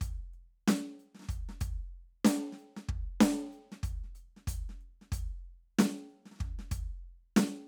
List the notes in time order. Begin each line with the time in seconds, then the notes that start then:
0.01 closed hi-hat, kick
0.34 closed hi-hat
0.68 closed hi-hat, snare
0.99 closed hi-hat
1.15 snare
1.19 snare
1.22 snare
1.24 snare
1.29 closed hi-hat, kick
1.49 snare
1.61 closed hi-hat, kick
2.25 closed hi-hat, snare
2.52 snare
2.58 closed hi-hat
2.77 snare
2.89 kick
3.21 closed hi-hat, snare
3.47 snare
3.50 closed hi-hat, snare
3.72 snare
3.83 closed hi-hat, kick
4.04 snare
4.15 closed hi-hat
4.37 snare
4.47 closed hi-hat, kick
4.69 snare
4.81 closed hi-hat
5.01 snare
5.12 closed hi-hat, kick
5.45 closed hi-hat
5.79 closed hi-hat, snare
6.10 closed hi-hat
6.26 snare
6.31 snare
6.36 snare
6.39 kick, snare, closed hi-hat
6.42 snare
6.59 snare
6.71 closed hi-hat, kick
7.36 closed hi-hat, snare